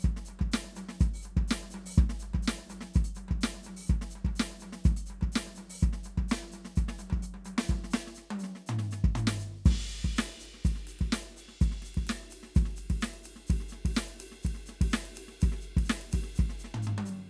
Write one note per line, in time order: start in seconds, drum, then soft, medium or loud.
0.01 kick medium
0.01 hi-hat pedal medium
0.06 high tom medium
0.17 snare soft
0.25 hi-hat pedal medium
0.25 high tom medium
0.39 kick medium
0.39 high tom medium
0.52 snare loud
0.52 hi-hat pedal medium
0.65 high tom medium
0.76 hi-hat pedal medium
0.76 high tom medium
0.89 snare medium
1.00 kick loud
1.00 hi-hat pedal loud
1.04 high tom soft
1.14 open hi-hat medium
1.22 hi-hat pedal medium
1.22 high tom soft
1.37 kick medium
1.37 high tom medium
1.48 snare loud
1.48 hi-hat pedal medium
1.63 high tom medium
1.71 hi-hat pedal medium
1.71 high tom medium
1.86 open hi-hat loud
1.95 kick loud
1.95 hi-hat pedal medium
1.99 high tom soft
2.10 snare medium
2.19 hi-hat pedal medium
2.19 high tom medium
2.34 kick medium
2.34 high tom medium
2.43 hi-hat pedal medium
2.48 snare loud
2.59 high tom medium
2.70 hi-hat pedal medium
2.70 high tom medium
2.81 snare medium
2.94 kick loud
2.94 hi-hat pedal medium
2.94 high tom soft
3.04 open hi-hat medium
3.15 hi-hat pedal medium
3.15 high tom medium
3.29 kick medium
3.29 high tom medium
3.41 snare loud
3.41 hi-hat pedal loud
3.55 high tom medium
3.64 hi-hat pedal medium
3.64 high tom medium
3.77 open hi-hat medium
3.87 kick loud
3.87 hi-hat pedal medium
3.92 high tom medium
4.02 snare medium
4.10 hi-hat pedal medium
4.16 high tom medium
4.25 kick medium
4.25 high tom medium
4.36 hi-hat pedal medium
4.40 snare loud
4.52 high tom medium
4.60 hi-hat pedal medium
4.60 high tom medium
4.73 snare medium
4.84 kick loud
4.84 hi-hat pedal medium
4.84 high tom soft
4.97 open hi-hat medium
5.06 hi-hat pedal medium
5.10 high tom medium
5.21 kick medium
5.21 high tom medium
5.32 snare loud
5.32 hi-hat pedal medium
5.47 high tom medium
5.55 hi-hat pedal medium
5.55 high tom medium
5.70 open hi-hat loud
5.81 kick loud
5.81 hi-hat pedal medium
5.81 high tom medium
5.93 snare soft
6.04 hi-hat pedal medium
6.04 high tom medium
6.18 kick medium
6.18 high tom medium
6.29 snare loud
6.29 hi-hat pedal medium
6.43 high tom soft
6.52 hi-hat pedal medium
6.52 high tom medium
6.65 snare medium
6.76 kick medium
6.76 hi-hat pedal medium
6.76 high tom medium
6.89 snare medium
6.99 hi-hat pedal medium
6.99 high tom medium
7.10 kick medium
7.10 high tom medium
7.23 open hi-hat medium
7.23 hi-hat pedal medium
7.34 high tom medium
7.45 hi-hat pedal medium
7.45 high tom medium
7.58 snare loud
7.67 kick medium
7.67 hi-hat pedal medium
7.71 high tom medium
7.84 snare soft
7.91 snare loud
7.91 hi-hat pedal medium
8.07 snare soft
8.15 snare soft
8.15 hi-hat pedal medium
8.31 high tom loud
8.39 hi-hat pedal medium
8.44 snare soft
8.55 snare soft
8.67 floor tom loud
8.67 hi-hat pedal medium
8.79 snare medium
8.91 snare medium
8.91 hi-hat pedal medium
9.04 kick loud
9.15 floor tom loud
9.15 hi-hat pedal medium
9.27 snare loud
9.40 hi-hat pedal medium
9.65 kick loud
9.65 hi-hat pedal medium
9.65 crash medium
9.65 ride loud
9.88 hi-hat pedal medium
10.05 kick medium
10.16 snare loud
10.16 hi-hat pedal medium
10.21 ride medium
10.40 hi-hat pedal medium
10.46 ride soft
10.54 snare soft
10.65 kick medium
10.65 hi-hat pedal medium
10.65 ride medium
10.76 snare soft
10.87 hi-hat pedal medium
10.87 ride medium
10.99 kick medium
10.99 ride medium
11.12 snare loud
11.12 hi-hat pedal medium
11.23 ride soft
11.37 hi-hat pedal medium
11.37 ride medium
11.48 snare soft
11.61 kick loud
11.61 hi-hat pedal medium
11.61 ride medium
11.72 snare soft
11.82 snare soft
11.82 hi-hat pedal medium
11.82 ride medium
11.95 kick medium
11.95 ride medium
12.07 snare loud
12.07 hi-hat pedal medium
12.07 ride medium
12.23 snare soft
12.30 hi-hat pedal medium
12.30 ride medium
12.43 snare soft
12.55 kick loud
12.55 hi-hat pedal medium
12.55 ride medium
12.65 snare soft
12.76 hi-hat pedal medium
12.76 ride medium
12.90 kick medium
12.90 ride medium
13.01 snare loud
13.01 hi-hat pedal medium
13.14 ride medium
13.24 hi-hat pedal medium
13.24 ride medium
13.36 snare soft
13.47 kick medium
13.47 hi-hat pedal medium
13.47 ride medium
13.60 snare soft
13.69 snare soft
13.69 hi-hat pedal medium
13.85 kick medium
13.85 ride medium
13.95 snare loud
13.95 hi-hat pedal medium
14.09 ride medium
14.20 hi-hat pedal medium
14.20 ride loud
14.32 snare soft
14.43 kick medium
14.43 hi-hat pedal medium
14.43 ride medium
14.55 snare soft
14.66 snare soft
14.66 hi-hat pedal medium
14.81 kick medium
14.81 ride loud
14.90 snare loud
14.90 hi-hat pedal medium
15.06 ride medium
15.15 hi-hat pedal medium
15.15 ride medium
15.28 snare soft
15.40 kick loud
15.40 hi-hat pedal medium
15.40 ride medium
15.52 snare soft
15.61 hi-hat pedal medium
15.77 kick medium
15.77 ride medium
15.85 hi-hat pedal medium
15.90 snare loud
16.02 ride medium
16.12 kick medium
16.12 hi-hat pedal medium
16.12 ride loud
16.23 snare soft
16.35 hi-hat pedal medium
16.35 ride medium
16.39 kick medium
16.50 snare soft
16.59 hi-hat pedal medium
16.64 snare soft
16.74 floor tom loud
16.83 hi-hat pedal medium
16.87 floor tom loud
16.98 high tom loud
17.06 hi-hat pedal medium
17.06 ride medium